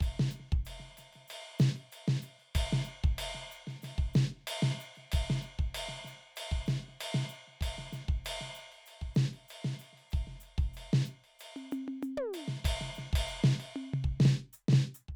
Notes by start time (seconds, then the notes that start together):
0.01 kick, hi-hat pedal, ride bell
0.20 snare
0.31 hi-hat pedal
0.40 snare
0.52 kick
0.65 hi-hat pedal, ride bell
0.80 snare
0.97 snare, hi-hat pedal, ride
1.13 snare, ride
1.28 hi-hat pedal, ride bell
1.59 snare, hi-hat pedal
1.76 ride
1.92 hi-hat pedal, ride bell
2.08 snare
2.22 hi-hat pedal, ride
2.39 snare, ride
2.55 kick, hi-hat pedal, ride
2.73 snare
2.85 hi-hat pedal
3.04 kick
3.19 hi-hat pedal, ride
3.35 snare
3.50 hi-hat pedal, ride
3.67 snare, ride
3.82 snare, hi-hat pedal, ride
3.98 kick
4.14 snare, hi-hat pedal
4.32 snare
4.47 hi-hat pedal, ride
4.63 snare
4.79 hi-hat pedal, ride
4.95 snare, ride
5.12 kick, hi-hat pedal, ride
5.30 snare
5.42 hi-hat pedal
5.59 kick
5.75 hi-hat pedal, ride
5.89 snare
6.05 snare, hi-hat pedal, ride
6.22 ride
6.36 hi-hat pedal, ride
6.52 kick
6.66 snare, hi-hat pedal, ride
6.89 snare
7.00 hi-hat pedal, ride
7.15 snare
7.29 hi-hat pedal
7.48 snare
7.61 kick, hi-hat pedal, ride
7.79 snare
7.93 snare, hi-hat pedal, ride
8.09 kick
8.25 hi-hat pedal, ride
8.41 snare
8.55 snare, hi-hat pedal, ride
8.72 ride
8.86 hi-hat pedal, ride bell
9.02 kick
9.15 snare, hi-hat pedal
9.33 snare, ride
9.49 hi-hat pedal, ride bell
9.65 snare
9.79 hi-hat pedal, ride
9.93 snare
9.98 ride
10.11 kick, hi-hat pedal, ride bell
10.27 snare
10.41 hi-hat pedal, ride
10.58 kick, ride
10.74 hi-hat pedal, ride bell
10.94 snare
11.06 hi-hat pedal
11.24 ride
11.39 hi-hat pedal, ride bell
11.56 open hi-hat, high tom
11.72 hi-hat pedal, high tom
11.88 high tom
12.03 hi-hat pedal, high tom
12.17 high tom
12.34 hi-hat pedal, ride
12.48 snare
12.65 kick, hi-hat pedal, ride
12.81 snare
12.95 snare, hi-hat pedal
13.13 kick, ride
13.28 hi-hat pedal, ride
13.44 snare
13.60 ride
13.76 high tom
13.94 floor tom
14.04 kick
14.21 snare
14.26 snare
14.53 hi-hat pedal
14.69 snare
14.73 snare
14.95 hi-hat pedal
15.09 kick